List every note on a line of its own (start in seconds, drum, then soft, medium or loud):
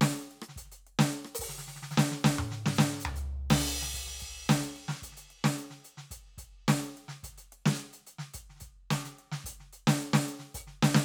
0.01 open hi-hat medium
0.01 snare loud
0.10 snare soft
0.17 open hi-hat soft
0.31 closed hi-hat soft
0.42 cross-stick medium
0.49 snare soft
0.56 closed hi-hat medium
0.56 kick soft
0.62 kick soft
0.62 snare soft
0.70 closed hi-hat soft
0.70 snare soft
0.87 closed hi-hat soft
0.99 snare loud
1.06 hi-hat pedal soft
1.13 closed hi-hat soft
1.25 cross-stick medium
1.35 hi-hat pedal loud
1.39 open hi-hat loud
1.39 kick soft
1.45 kick soft
1.45 snare soft
1.58 snare soft
1.67 snare soft
1.76 snare soft
1.83 snare medium
1.91 snare medium
1.91 hi-hat pedal medium
1.98 snare loud
2.11 snare medium
2.19 hi-hat pedal soft
2.24 kick soft
2.24 snare loud
2.39 high tom loud
2.51 snare medium
2.66 snare loud
2.76 snare loud
2.76 hi-hat pedal medium
2.92 snare soft
2.97 snare soft
2.97 hi-hat pedal medium
3.02 kick soft
3.02 floor tom loud
3.16 hi-hat pedal medium
3.50 snare loud
3.50 crash loud
3.58 snare medium
3.63 closed hi-hat soft
3.82 snare soft
3.94 closed hi-hat medium
3.94 kick soft
4.00 kick soft
4.07 snare soft
4.14 snare soft
4.19 closed hi-hat medium
4.19 kick soft
4.30 kick soft
4.49 closed hi-hat medium
4.49 snare loud
4.60 closed hi-hat soft
4.60 snare soft
4.76 closed hi-hat soft
4.88 snare medium
4.95 snare soft
5.02 closed hi-hat medium
5.02 kick soft
5.12 snare soft
5.16 closed hi-hat medium
5.16 snare soft
5.19 snare soft
5.24 snare soft
5.26 snare soft
5.30 closed hi-hat soft
5.44 snare loud
5.58 closed hi-hat medium
5.70 snare soft
5.84 closed hi-hat medium
5.84 hi-hat pedal soft
5.97 snare soft
6.11 closed hi-hat medium
6.11 kick soft
6.19 kick soft
6.27 snare soft
6.38 closed hi-hat medium
6.38 kick soft
6.44 kick soft
6.46 kick soft
6.68 closed hi-hat medium
6.68 snare loud
6.77 snare soft
6.83 open hi-hat medium
6.97 closed hi-hat soft
7.08 snare medium
7.23 closed hi-hat medium
7.23 kick soft
7.23 snare soft
7.29 kick soft
7.29 snare soft
7.36 closed hi-hat medium
7.36 snare soft
7.39 snare soft
7.52 closed hi-hat soft
7.66 snare loud
7.75 hi-hat pedal medium
7.80 closed hi-hat soft
7.93 closed hi-hat soft
8.07 closed hi-hat medium
8.19 snare medium
8.34 closed hi-hat medium
8.34 kick soft
8.40 kick soft
8.50 snare soft
8.56 snare soft
8.59 closed hi-hat medium
8.59 kick soft
8.59 snare soft
8.63 snare soft
8.91 closed hi-hat medium
8.91 snare loud
9.05 open hi-hat medium
9.05 snare soft
9.19 closed hi-hat soft
9.32 snare medium
9.44 closed hi-hat medium
9.44 kick soft
9.50 kick soft
9.60 snare soft
9.73 closed hi-hat soft
9.87 snare loud
10.00 closed hi-hat medium
10.13 snare loud
10.28 closed hi-hat medium
10.39 snare soft
10.54 open hi-hat loud
10.54 kick soft
10.54 hi-hat pedal soft
10.60 kick soft
10.67 snare soft
10.83 snare loud
10.95 snare loud